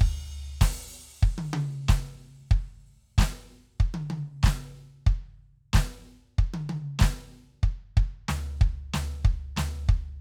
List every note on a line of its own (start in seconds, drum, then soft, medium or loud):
0.01 kick loud
0.61 open hi-hat loud
0.61 kick loud
0.61 snare loud
0.77 snare soft
1.23 kick loud
1.38 high tom loud
1.53 high tom loud
1.89 kick loud
1.89 snare loud
2.51 kick loud
3.18 kick loud
3.18 snare loud
3.21 snare loud
3.80 kick loud
3.94 high tom loud
4.10 high tom loud
4.43 kick loud
4.43 snare loud
4.46 snare loud
5.07 kick loud
5.73 kick loud
5.73 snare loud
5.76 snare loud
6.39 kick loud
6.54 high tom loud
6.70 high tom loud
6.99 kick loud
6.99 snare loud
7.03 snare loud
7.63 kick loud
7.97 kick loud
8.29 snare loud
8.29 floor tom loud
8.61 kick loud
8.94 snare loud
8.94 floor tom loud
9.25 kick loud
9.57 snare loud
9.57 floor tom loud
9.89 kick loud